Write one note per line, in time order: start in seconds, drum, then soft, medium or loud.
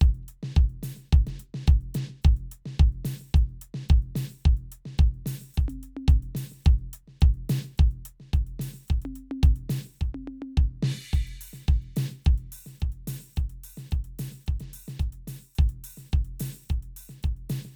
0.01 closed hi-hat soft
0.01 kick loud
0.01 hi-hat pedal soft
0.17 closed hi-hat soft
0.25 kick soft
0.30 closed hi-hat medium
0.45 snare medium
0.58 kick loud
0.58 closed hi-hat soft
0.72 closed hi-hat soft
0.85 open hi-hat medium
0.85 snare medium
0.99 snare soft
1.10 hi-hat pedal soft
1.15 kick loud
1.15 closed hi-hat soft
1.29 snare medium
1.29 closed hi-hat soft
1.42 closed hi-hat medium
1.56 snare medium
1.70 kick loud
1.70 closed hi-hat soft
1.83 closed hi-hat soft
1.97 open hi-hat medium
1.97 snare loud
2.11 snare soft
2.24 kick loud
2.24 closed hi-hat soft
2.24 hi-hat pedal soft
2.30 snare soft
2.39 closed hi-hat soft
2.54 closed hi-hat medium
2.68 snare medium
2.81 kick loud
2.81 closed hi-hat soft
2.94 closed hi-hat soft
3.07 open hi-hat medium
3.07 snare medium
3.23 snare soft
3.32 hi-hat pedal soft
3.36 kick loud
3.36 snare soft
3.36 closed hi-hat soft
3.51 closed hi-hat soft
3.64 closed hi-hat medium
3.77 snare medium
3.91 kick loud
3.91 closed hi-hat soft
4.04 closed hi-hat soft
4.18 open hi-hat medium
4.18 snare loud
4.34 snare soft
4.43 hi-hat pedal soft
4.47 kick loud
4.47 snare soft
4.47 closed hi-hat soft
4.59 closed hi-hat soft
4.74 closed hi-hat medium
4.88 snare medium
5.01 kick loud
5.01 closed hi-hat soft
5.16 closed hi-hat soft
5.28 open hi-hat medium
5.28 snare medium
5.44 snare soft
5.56 kick medium
5.56 hi-hat pedal soft
5.56 open hi-hat soft
5.70 closed hi-hat soft
5.70 high tom medium
5.85 closed hi-hat medium
5.99 high tom loud
6.10 kick loud
6.10 closed hi-hat soft
6.25 closed hi-hat soft
6.37 open hi-hat medium
6.37 snare medium
6.54 snare soft
6.65 kick loud
6.65 closed hi-hat soft
6.65 hi-hat pedal soft
6.74 snare soft
6.81 closed hi-hat soft
6.95 closed hi-hat loud
7.10 snare soft
7.23 kick loud
7.23 closed hi-hat soft
7.36 closed hi-hat soft
7.52 open hi-hat medium
7.52 snare loud
7.67 snare soft
7.73 snare soft
7.77 snare soft
7.77 closed hi-hat soft
7.77 hi-hat pedal soft
7.81 kick loud
7.81 snare soft
7.93 closed hi-hat soft
8.07 closed hi-hat medium
8.22 snare soft
8.36 kick loud
8.36 closed hi-hat soft
8.49 closed hi-hat soft
8.62 open hi-hat medium
8.62 snare medium
8.76 snare soft
8.89 kick medium
8.89 closed hi-hat soft
8.89 hi-hat pedal soft
9.04 closed hi-hat soft
9.04 high tom loud
9.18 closed hi-hat medium
9.33 high tom loud
9.45 kick loud
9.45 closed hi-hat medium
9.58 closed hi-hat soft
9.72 open hi-hat medium
9.72 snare loud
9.89 snare soft
10.01 kick medium
10.01 hi-hat pedal soft
10.17 high tom loud
10.30 high tom loud
10.44 high tom loud
10.59 kick loud
10.85 snare loud
10.85 crash medium
11.15 kick medium
11.15 closed hi-hat soft
11.29 closed hi-hat soft
11.43 open hi-hat medium
11.55 snare soft
11.65 hi-hat pedal soft
11.70 kick loud
11.70 closed hi-hat soft
11.84 closed hi-hat soft
11.98 open hi-hat medium
11.98 snare loud
12.13 snare soft
12.23 closed hi-hat soft
12.23 hi-hat pedal soft
12.28 kick loud
12.39 snare soft
12.39 closed hi-hat soft
12.44 snare soft
12.54 open hi-hat medium
12.68 snare soft
12.78 hi-hat pedal soft
12.82 kick medium
12.82 closed hi-hat soft
12.94 closed hi-hat soft
13.10 open hi-hat medium
13.10 snare medium
13.23 snare soft
13.36 kick medium
13.36 closed hi-hat medium
13.36 hi-hat pedal soft
13.52 closed hi-hat soft
13.66 open hi-hat medium
13.80 snare medium
13.90 closed hi-hat soft
13.90 hi-hat pedal soft
13.94 kick medium
14.06 closed hi-hat soft
14.21 open hi-hat medium
14.21 snare medium
14.26 kick soft
14.34 snare soft
14.44 hi-hat pedal soft
14.49 kick medium
14.49 closed hi-hat soft
14.62 snare soft
14.62 closed hi-hat soft
14.75 open hi-hat medium
14.90 snare medium
14.96 hi-hat pedal soft
15.02 kick medium
15.02 closed hi-hat soft
15.15 closed hi-hat soft
15.30 snare medium
15.30 open hi-hat medium
15.57 kick loud
15.57 hi-hat pedal soft
15.57 open hi-hat soft
15.71 closed hi-hat soft
15.86 open hi-hat medium
16.00 snare soft
16.11 closed hi-hat soft
16.11 hi-hat pedal soft
16.15 kick loud
16.27 closed hi-hat soft
16.42 open hi-hat loud
16.42 snare medium
16.57 snare soft
16.69 kick medium
16.69 closed hi-hat soft
16.69 hi-hat pedal soft
16.85 closed hi-hat soft
16.99 open hi-hat medium
17.11 snare soft
17.22 closed hi-hat medium
17.22 hi-hat pedal soft
17.26 kick medium
17.39 closed hi-hat soft
17.52 open hi-hat medium
17.52 snare loud
17.67 snare soft